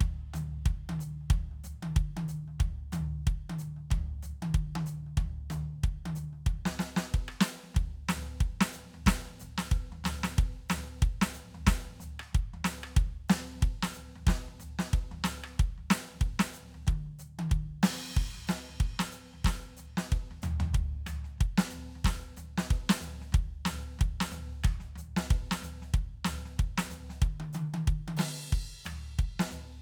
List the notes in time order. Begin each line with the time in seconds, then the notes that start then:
0.01 kick, floor tom
0.21 kick
0.34 floor tom, hi-hat pedal, high tom
0.51 high tom
0.66 kick, floor tom
0.90 high tom
1.00 floor tom, hi-hat pedal
1.21 high tom
1.31 kick, floor tom
1.52 high tom
1.64 floor tom, hi-hat pedal
1.83 high tom
1.96 kick, floor tom
2.17 high tom
2.29 kick, floor tom, hi-hat pedal
2.48 high tom
2.60 kick, floor tom
2.93 floor tom, hi-hat pedal, high tom
3.27 kick, floor tom
3.50 high tom
3.59 kick, floor tom, hi-hat pedal
3.77 high tom
3.91 kick, floor tom
4.13 high tom
4.23 floor tom, hi-hat pedal
4.43 high tom
4.55 kick, floor tom
4.76 high tom
4.87 floor tom, hi-hat pedal
5.07 high tom
5.18 kick, floor tom
5.51 floor tom, hi-hat pedal, high tom
5.84 kick, floor tom
6.06 high tom
6.16 floor tom, hi-hat pedal
6.33 high tom
6.47 kick, floor tom
6.66 snare
6.80 snare, hi-hat pedal
6.97 snare
7.14 kick
7.29 cross-stick
7.41 snare
7.46 hi-hat pedal
7.64 snare
7.75 kick, floor tom
8.09 snare, floor tom, hi-hat pedal
8.27 snare
8.41 kick, floor tom
8.61 snare
8.73 floor tom, hi-hat pedal
8.95 floor tom
9.07 kick, snare
9.27 floor tom
9.40 kick, floor tom, hi-hat pedal
9.58 snare
9.72 kick, floor tom
9.92 floor tom
10.05 snare, floor tom, hi-hat pedal
10.24 snare
10.38 kick, floor tom
10.70 snare, floor tom, hi-hat pedal
11.03 kick, floor tom
11.22 snare
11.34 floor tom, hi-hat pedal
11.55 floor tom
11.67 kick, snare
11.88 floor tom
12.00 floor tom, hi-hat pedal
12.20 cross-stick
12.33 kick, floor tom
12.54 floor tom
12.65 snare, hi-hat pedal
12.84 cross-stick
12.97 kick, floor tom
13.29 snare, floor tom, hi-hat pedal
13.51 snare
13.62 kick, floor tom
13.83 snare
13.94 floor tom, hi-hat pedal
14.16 floor tom
14.27 kick, snare
14.49 floor tom
14.60 kick, floor tom, hi-hat pedal
14.79 snare
14.93 kick, floor tom
15.12 floor tom
15.24 snare, hi-hat pedal
15.44 cross-stick
15.59 kick, floor tom
15.78 floor tom
15.91 snare, hi-hat pedal
16.12 floor tom
16.22 kick, floor tom
16.40 snare
16.54 floor tom, hi-hat pedal
16.75 floor tom
16.87 kick, high tom
17.07 floor tom
17.19 floor tom, hi-hat pedal
17.39 high tom
17.50 kick, floor tom
17.83 snare, hi-hat pedal, crash
18.17 kick, floor tom
18.34 floor tom
18.48 snare, hi-hat pedal
18.70 floor tom
18.81 kick, floor tom
19.00 snare
19.12 hi-hat pedal
19.34 floor tom
19.45 kick, snare
19.66 floor tom
19.77 floor tom, hi-hat pedal
19.98 snare
20.09 kick, floor tom
20.31 floor tom
20.43 floor tom, hi-hat pedal
20.61 floor tom
20.74 kick, floor tom
21.07 cross-stick, floor tom, hi-hat pedal
21.24 snare
21.39 kick, floor tom
21.58 snare
21.70 floor tom, hi-hat pedal
21.96 floor tom
22.05 kick, snare, floor tom, hi-hat pedal
22.37 kick, floor tom, hi-hat pedal
22.58 snare
22.69 kick, floor tom
22.73 hi-hat pedal
22.90 snare
23.01 floor tom, hi-hat pedal
23.22 snare
23.33 kick, floor tom
23.66 snare, floor tom, hi-hat pedal
23.99 kick, floor tom
24.21 snare
24.32 floor tom, hi-hat pedal
24.64 kick, cross-stick, floor tom
24.80 snare
24.96 floor tom, hi-hat pedal
25.17 snare
25.30 kick, floor tom
25.52 snare
25.63 floor tom, hi-hat pedal
25.82 snare
25.94 kick, floor tom
26.25 snare, floor tom, hi-hat pedal
26.46 snare
26.59 kick, floor tom
26.78 snare
26.91 floor tom, hi-hat pedal
27.10 snare
27.22 kick, high tom
27.40 high tom
27.54 hi-hat pedal, high tom
27.74 high tom
27.88 kick
28.08 high tom
28.17 snare, hi-hat pedal, crash
28.53 kick, floor tom
28.85 cross-stick, floor tom, hi-hat pedal
29.19 kick, floor tom
29.40 snare
29.51 floor tom, hi-hat pedal